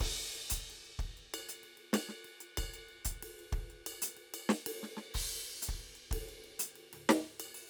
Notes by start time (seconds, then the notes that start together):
0.00 kick, ride
0.34 ride
0.50 closed hi-hat, kick
0.70 ride
0.85 closed hi-hat
0.99 kick, ride
1.17 closed hi-hat
1.34 ride bell
1.49 closed hi-hat
1.63 ride
1.77 ride
1.93 snare, ride bell
2.08 snare
2.24 ride
2.40 closed hi-hat
2.57 kick, ride bell
2.74 closed hi-hat
2.89 ride
3.05 closed hi-hat, kick
3.23 ride
3.39 closed hi-hat
3.52 kick, ride
3.70 closed hi-hat
3.86 ride bell
4.02 closed hi-hat
4.17 ride
4.34 ride bell
4.49 snare
4.66 ride
4.83 snare
4.97 snare
5.14 kick, crash
5.30 closed hi-hat
5.46 ride
5.62 closed hi-hat
5.68 kick
5.80 ride
5.95 closed hi-hat
6.11 kick, ride
6.28 closed hi-hat
6.44 ride
6.59 closed hi-hat
6.76 ride
6.93 cross-stick, high tom, ride, floor tom
7.09 snare
7.40 ride bell
7.54 open hi-hat